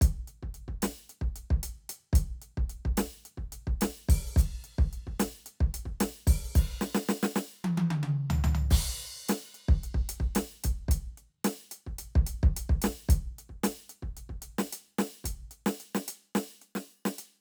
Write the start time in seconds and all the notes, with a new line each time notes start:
0.01 kick, closed hi-hat
0.27 closed hi-hat
0.42 kick
0.54 closed hi-hat
0.68 kick
0.82 snare, closed hi-hat
1.09 closed hi-hat
1.21 kick
1.36 closed hi-hat
1.50 kick
1.63 closed hi-hat
1.89 closed hi-hat
2.13 kick, closed hi-hat
2.41 closed hi-hat
2.57 kick
2.69 closed hi-hat
2.85 kick
2.97 snare, closed hi-hat
3.25 closed hi-hat
3.37 kick
3.52 closed hi-hat
3.67 kick
3.81 snare, closed hi-hat
4.09 kick, open hi-hat
4.36 kick, hi-hat pedal, crash
4.64 closed hi-hat
4.78 kick
4.93 closed hi-hat
5.07 kick
5.20 snare, closed hi-hat
5.46 closed hi-hat
5.60 kick
5.74 closed hi-hat
5.85 kick
6.00 snare, closed hi-hat
6.27 kick, open hi-hat
6.55 kick, hi-hat pedal, crash
6.81 snare
6.95 snare
7.09 snare
7.23 snare
7.36 snare
7.64 high tom
7.77 high tom
7.90 mid tom
8.03 mid tom
8.30 floor tom
8.44 floor tom
8.55 floor tom
8.70 kick, crash
9.29 snare, closed hi-hat
9.54 closed hi-hat
9.68 kick
9.83 closed hi-hat
9.94 kick
10.09 closed hi-hat
10.20 kick
10.35 snare, closed hi-hat
10.64 kick, closed hi-hat
10.88 kick, closed hi-hat
11.17 closed hi-hat
11.44 snare, closed hi-hat
11.71 closed hi-hat
11.86 kick
11.98 closed hi-hat
12.15 kick
12.26 closed hi-hat
12.43 kick
12.56 closed hi-hat
12.69 kick
12.82 snare, closed hi-hat
13.09 kick, closed hi-hat
13.38 closed hi-hat
13.49 kick
13.63 snare, closed hi-hat
13.89 closed hi-hat
14.02 kick
14.17 closed hi-hat
14.29 kick
14.42 closed hi-hat
14.58 snare
14.72 closed hi-hat
14.98 snare
15.24 kick, closed hi-hat
15.51 closed hi-hat
15.66 snare
15.80 closed hi-hat
15.95 snare
16.08 closed hi-hat
16.35 snare
16.61 closed hi-hat
16.75 snare
17.05 snare
17.18 closed hi-hat